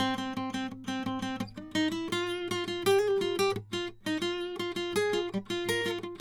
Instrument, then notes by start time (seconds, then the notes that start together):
acoustic guitar
0.00 C4
0.20 C4
0.39 C4
0.56 C4
0.73 C4
0.90 C4
1.08 C4
1.24 C4
1.59 D#4
1.76 D#4
1.94 E4
2.14 F4
2.59 F4
2.70 F4
2.88 G4
3.00 G#4
3.10 G4
3.23 F4
3.40 G4
3.75 F4
4.08 D#4
4.24 F4
4.61 F4
4.78 F4
4.97 G#4
5.15 F4
5.52 F4
5.70 A#4
5.88 F4
6.05 F4